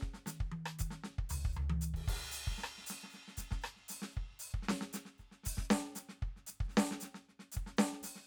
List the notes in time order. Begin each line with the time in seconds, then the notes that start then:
0.01 kick, snare
0.14 snare
0.26 snare, hi-hat pedal, high tom
0.40 kick
0.52 high tom
0.66 cross-stick
0.79 kick, hi-hat pedal, high tom
0.91 snare
1.04 snare
1.18 kick
1.29 floor tom, hi-hat pedal
1.45 kick
1.53 floor tom, hi-hat pedal
1.70 high tom
1.81 hi-hat pedal
1.94 kick, ride
2.04 kick, hi-hat pedal
2.09 crash
2.31 hi-hat pedal
2.47 kick, snare
2.58 snare
2.63 cross-stick
2.78 snare
2.86 snare, hi-hat pedal
3.03 snare
3.09 hi-hat pedal
3.14 snare
3.28 snare
3.37 kick, snare, hi-hat pedal
3.51 kick, snare
3.61 cross-stick, hi-hat pedal
3.76 snare
3.88 snare, hi-hat pedal
4.02 snare
4.13 snare, hi-hat pedal
4.17 kick
4.30 snare
4.39 hi-hat pedal
4.54 kick, snare
4.62 snare
4.69 snare
4.81 snare
4.93 snare, hi-hat pedal
5.05 snare
5.18 kick, snare, hi-hat pedal
5.31 snare
5.43 kick, snare, hi-hat pedal
5.57 kick, snare
5.69 snare, hi-hat pedal
5.80 snare
5.83 snare
5.95 snare, hi-hat pedal
6.09 snare
6.22 kick, snare
6.36 snare
6.46 snare, hi-hat pedal
6.60 kick, snare
6.68 snare, hi-hat pedal
6.73 snare
6.77 snare
6.91 snare
7.00 snare, hi-hat pedal
7.14 snare
7.29 snare
7.39 snare
7.52 snare, hi-hat pedal
7.57 kick
7.66 snare
7.77 snare, hi-hat pedal
7.93 snare
8.02 kick, snare, hi-hat pedal
8.16 snare